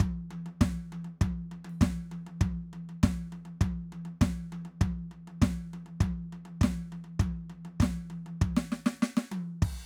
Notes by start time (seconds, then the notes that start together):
0.00 kick, high tom
0.31 high tom
0.46 high tom
0.61 kick, snare, high tom
0.92 high tom
1.04 high tom
1.21 kick, high tom
1.51 high tom
1.65 high tom
1.70 crash
1.81 kick, snare, high tom
2.12 high tom
2.27 high tom
2.41 kick, high tom
2.73 high tom
2.89 high tom
3.03 kick, snare, high tom
3.32 high tom
3.45 high tom
3.61 kick, high tom
3.92 high tom
4.05 high tom
4.21 kick, snare, high tom
4.52 high tom
4.65 high tom
4.81 kick, high tom
5.11 high tom
5.27 high tom
5.42 kick, snare, high tom
5.73 high tom
5.86 high tom
6.00 kick, high tom
6.33 high tom
6.45 high tom
6.61 kick, snare, high tom
6.92 high tom
7.04 high tom
7.20 kick, high tom
7.50 high tom
7.65 high tom
7.80 kick, snare, high tom
8.10 high tom
8.26 high tom
8.41 kick, high tom
8.57 snare
8.72 snare
8.86 snare
9.02 snare
9.17 snare
9.32 high tom
9.62 kick, crash